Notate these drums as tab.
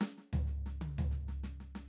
Hi-hat    |p-----------|
Snare     |oo-oo--ooooo|
High tom  |-----o------|
Floor tom |--o---o-----|